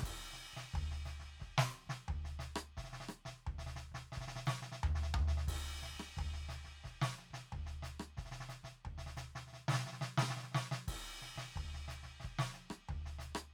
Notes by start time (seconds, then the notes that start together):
0.01 kick, cross-stick
0.06 crash
0.34 snare
0.54 kick, snare
0.74 kick, floor tom
0.92 snare
1.06 snare, hi-hat pedal
1.20 kick, snare
1.41 kick, snare
1.59 snare
1.71 snare, hi-hat pedal
1.88 kick, snare
2.09 kick, floor tom
2.25 snare
2.40 snare, hi-hat pedal
2.56 kick, cross-stick
2.78 kick, snare
2.85 snare
2.90 snare
2.93 snare
3.01 snare
3.09 cross-stick, hi-hat pedal
3.26 kick, snare
3.47 kick, floor tom
3.59 snare
3.67 snare
3.77 snare, hi-hat pedal
3.92 kick, snare
4.13 snare
4.18 kick, snare
4.28 snare
4.37 snare
4.46 snare, hi-hat pedal
4.56 kick
4.63 snare
4.73 snare
4.84 kick, floor tom
4.96 snare
5.03 snare
5.15 kick, floor tom
5.28 snare
5.38 snare
5.48 kick, crash
5.54 snare
5.83 snare
5.94 kick
6.00 cross-stick
6.18 kick, floor tom
6.34 snare
6.49 snare, hi-hat pedal
6.65 kick, snare
6.85 kick, snare
7.02 snare
7.17 snare, hi-hat pedal
7.31 kick, snare
7.53 kick, floor tom
7.67 snare
7.83 snare, hi-hat pedal
8.00 cross-stick
8.18 kick, snare
8.26 snare
8.32 snare
8.41 snare
8.50 snare, hi-hat pedal
8.64 kick, snare
8.86 kick, floor tom
8.99 snare
9.07 snare
9.18 snare, hi-hat pedal
9.36 snare
9.48 snare
9.54 snare
9.69 snare
9.72 snare
9.74 snare
9.80 snare
9.87 snare
9.93 snare
10.02 snare
10.18 snare
10.23 cross-stick
10.29 snare
10.31 snare
10.36 snare
10.44 snare
10.52 snare
10.55 snare
10.72 snare
10.88 kick, crash
11.22 snare
11.37 kick, snare
11.57 kick, floor tom
11.75 snare
11.89 snare, hi-hat pedal
12.04 kick, snare
12.21 snare
12.25 kick
12.39 snare
12.54 snare, hi-hat pedal
12.71 kick, cross-stick
12.89 kick, floor tom
13.06 snare
13.19 snare, hi-hat pedal
13.33 kick, cross-stick